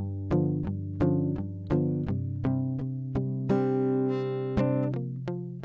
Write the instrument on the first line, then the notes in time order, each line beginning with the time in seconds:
acoustic guitar
0.00 G2
0.33 D3 F3 B3
0.66 G2 D3
1.02 D3 F3 C#4
1.38 G2 D3
1.72 D3 F3 B3
2.06 C3 A#3
2.10 G2
2.46 C3 G3
2.81 C3
3.17 C3 G3
3.51 G3 C4
4.59 G3 C4 D4
4.85 B3
4.96 F3
5.29 F3